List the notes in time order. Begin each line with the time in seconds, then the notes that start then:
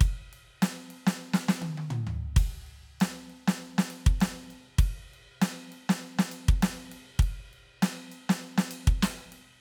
0.01 kick, ride bell
0.33 ride
0.62 snare, ride bell
0.91 ride
1.07 snare
1.34 snare
1.49 snare
1.62 high tom
1.78 high tom
1.91 mid tom
2.07 floor tom
2.37 kick, ride bell, crash
2.67 ride
3.01 snare, ride bell
3.30 ride
3.48 snare
3.78 snare
3.91 ride
4.07 kick
4.21 snare, ride
4.50 ride bell
4.79 kick, ride
5.14 ride
5.42 snare, ride bell
5.72 ride
5.90 snare
6.19 snare
6.32 ride bell
6.49 kick
6.63 snare, ride
6.92 ride
7.19 kick, ride
7.53 ride
7.83 snare, ride bell
8.12 ride bell
8.30 snare
8.58 snare
8.71 ride bell
8.88 kick
9.03 snare, ride bell
9.32 ride